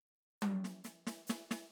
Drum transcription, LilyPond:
\new DrumStaff \drummode { \time 4/4 \tempo 4 = 140 r4 <hhp tommh>8 sn8 <hhp sn>8 sn8 <hhp sn>8 sn8 | }